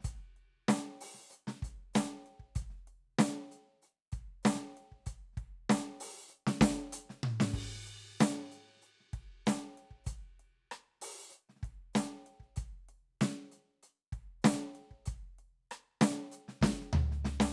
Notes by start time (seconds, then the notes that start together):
0.01 snare, hi-hat pedal
0.05 closed hi-hat, kick
0.11 kick
0.15 snare
0.17 snare
0.37 closed hi-hat
0.69 closed hi-hat, snare
1.02 open hi-hat
1.15 snare
1.20 snare
1.31 closed hi-hat, hi-hat pedal
1.48 snare
1.63 closed hi-hat, kick
1.94 closed hi-hat, snare, hi-hat pedal
2.27 closed hi-hat
2.40 kick
2.56 closed hi-hat, kick
2.63 kick
2.67 kick, snare
2.75 snare
2.88 closed hi-hat
3.19 closed hi-hat, snare
3.52 closed hi-hat
3.83 open hi-hat, hi-hat pedal
4.13 closed hi-hat, kick
4.21 kick
4.44 closed hi-hat, snare, hi-hat pedal
4.56 snare
4.78 closed hi-hat
4.93 kick
5.00 snare
5.03 snare
5.06 closed hi-hat, kick, snare
5.34 snare
5.38 kick, closed hi-hat
5.70 closed hi-hat, snare
5.83 snare
6.01 open hi-hat
6.30 hi-hat pedal
6.48 snare
6.62 kick, snare
6.80 snare
6.93 closed hi-hat
7.10 snare
7.24 high tom
7.41 snare
7.54 kick, crash
7.76 snare
7.81 snare
7.85 closed hi-hat, snare
7.88 snare
8.21 closed hi-hat, snare
8.52 closed hi-hat
8.77 snare
8.83 open hi-hat
9.01 snare
9.06 snare
9.14 kick, closed hi-hat
9.47 open hi-hat, snare, hi-hat pedal
9.78 closed hi-hat
9.92 kick
10.05 closed hi-hat, kick, hi-hat pedal
10.13 kick
10.40 closed hi-hat
10.72 closed hi-hat, cross-stick
11.01 open hi-hat, snare
11.32 closed hi-hat, hi-hat pedal
11.50 snare
11.57 snare
11.61 kick, snare
11.65 snare, closed hi-hat
11.94 closed hi-hat, snare, hi-hat pedal
12.27 closed hi-hat
12.41 kick, snare
12.57 closed hi-hat, kick
12.90 closed hi-hat
13.22 closed hi-hat, snare
13.44 snare
13.52 closed hi-hat
13.84 closed hi-hat
14.13 kick, closed hi-hat
14.43 closed hi-hat, snare, hi-hat pedal
14.53 snare
14.76 closed hi-hat
14.92 kick
15.07 closed hi-hat, kick
15.17 kick
15.39 closed hi-hat
15.72 closed hi-hat, cross-stick
16.02 closed hi-hat, snare
16.12 snare
16.32 hi-hat pedal
16.49 snare
16.62 kick, snare
16.68 kick
16.71 kick
16.82 snare
16.94 floor tom
17.12 snare
17.25 snare
17.41 snare